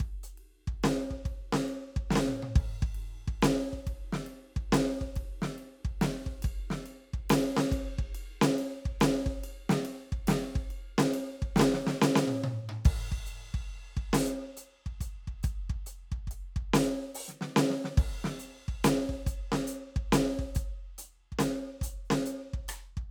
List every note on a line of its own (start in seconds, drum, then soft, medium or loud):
0.00 kick medium
0.00 ride soft
0.23 closed hi-hat medium
0.38 ride soft
0.67 kick medium
0.83 snare loud
0.83 ride soft
1.11 kick medium
1.25 kick medium
1.25 ride soft
1.53 snare loud
1.68 ride soft
1.96 kick medium
2.11 snare loud
2.16 snare loud
2.28 high tom medium
2.43 high tom medium
2.56 kick loud
2.56 crash soft
2.82 kick medium
2.95 ride soft
3.28 kick medium
3.42 snare loud
3.42 ride medium
3.73 kick soft
3.87 kick medium
3.87 ride soft
4.13 snare medium
4.26 ride medium
4.56 kick medium
4.72 snare loud
5.01 kick medium
5.16 kick medium
5.16 ride medium
5.42 snare medium
5.58 ride soft
5.85 kick medium
6.01 snare loud
6.01 ride medium
6.26 kick medium
6.42 kick medium
6.42 ride bell medium
6.70 snare medium
6.86 ride bell medium
7.13 kick medium
7.30 snare loud
7.30 ride loud
7.57 snare loud
7.71 kick medium
7.71 ride bell medium
7.98 kick medium
8.15 ride bell medium
8.41 snare loud
8.58 ride bell medium
8.85 kick medium
9.01 snare loud
9.01 ride bell medium
9.26 kick medium
9.44 ride bell medium
9.69 snare loud
9.85 ride bell medium
10.12 kick medium
10.27 snare loud
10.27 ride bell loud
10.55 kick medium
10.70 ride bell soft
10.98 snare loud
11.14 ride bell medium
11.42 kick medium
11.56 snare loud
11.59 snare loud
11.74 snare medium
11.87 snare loud
12.02 snare loud
12.16 snare loud
12.28 high tom loud
12.44 high tom loud
12.69 high tom medium
12.85 kick loud
12.85 crash medium
13.12 kick medium
13.26 closed hi-hat medium
13.54 kick medium
13.97 kick medium
14.13 open hi-hat loud
14.13 snare loud
14.26 hi-hat pedal soft
14.57 closed hi-hat medium
14.70 closed hi-hat soft
14.86 kick medium
15.01 closed hi-hat medium
15.01 kick medium
15.27 kick medium
15.43 closed hi-hat medium
15.43 kick medium
15.69 kick medium
15.86 closed hi-hat medium
16.12 kick medium
16.27 kick medium
16.27 closed hi-hat medium
16.56 kick medium
16.74 open hi-hat loud
16.74 snare loud
16.84 hi-hat pedal soft
17.15 open hi-hat loud
17.28 snare soft
17.28 hi-hat pedal medium
17.41 snare medium
17.56 snare loud
17.70 snare medium
17.84 snare medium
17.97 kick loud
17.97 crash medium
18.24 snare medium
18.39 closed hi-hat medium
18.68 kick medium
18.84 open hi-hat loud
18.84 snare loud
19.09 kick medium
19.26 closed hi-hat medium
19.26 kick medium
19.52 snare medium
19.67 closed hi-hat loud
19.96 kick medium
20.12 closed hi-hat loud
20.12 snare loud
20.39 kick medium
20.55 closed hi-hat medium
20.55 kick medium
20.98 closed hi-hat loud
21.32 kick soft
21.39 closed hi-hat loud
21.39 snare loud
21.81 closed hi-hat loud
21.81 kick medium
22.05 hi-hat pedal soft
22.10 snare loud
22.26 closed hi-hat medium
22.53 kick medium
22.63 kick soft
22.68 closed hi-hat loud
22.68 cross-stick medium
22.97 kick medium